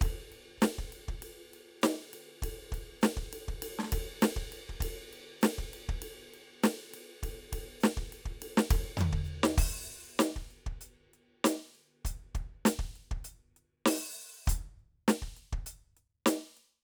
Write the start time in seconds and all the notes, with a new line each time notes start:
0.01 kick, ride
0.32 ride
0.58 kick, hi-hat pedal
0.62 snare, ride
0.78 kick
0.92 ride
1.08 kick
1.22 ride
1.54 ride
1.81 snare, hi-hat pedal, ride
2.13 ride
2.42 kick, ride
2.72 kick, ride
3.01 snare, hi-hat pedal, ride
3.17 kick
3.33 ride
3.48 kick
3.62 ride
3.79 snare
3.83 snare
3.86 snare
3.89 kick, snare, ride
4.21 snare, hi-hat pedal, ride
4.36 kick
4.52 ride
4.69 kick
4.80 kick, ride
5.13 ride
5.41 snare, hi-hat pedal, ride
5.58 kick
5.73 ride
5.89 kick
6.02 ride
6.34 ride
6.63 snare, hi-hat pedal, ride
6.94 ride
7.23 kick, ride
7.52 kick, ride
7.80 snare, hi-hat pedal, ride
7.97 kick
8.12 ride
8.25 kick
8.40 hi-hat pedal, ride
8.57 snare
8.71 kick, ride
8.97 floor tom, hi-hat pedal, high tom
9.12 kick
9.24 hi-hat pedal
9.43 snare
9.58 open hi-hat, kick
10.13 kick
10.19 closed hi-hat, snare, hi-hat pedal
10.36 kick
10.51 closed hi-hat
10.66 kick
10.81 closed hi-hat
11.13 closed hi-hat
11.44 closed hi-hat, snare
11.75 closed hi-hat
12.05 closed hi-hat, kick
12.35 kick, closed hi-hat
12.65 closed hi-hat, snare
12.79 kick
12.96 closed hi-hat
13.11 kick
13.24 closed hi-hat
13.56 closed hi-hat
13.86 open hi-hat, snare
14.46 closed hi-hat, kick, hi-hat pedal
14.79 closed hi-hat
15.08 closed hi-hat, snare
15.22 kick
15.37 closed hi-hat
15.53 kick
15.66 closed hi-hat
15.97 closed hi-hat
16.26 closed hi-hat, snare
16.57 closed hi-hat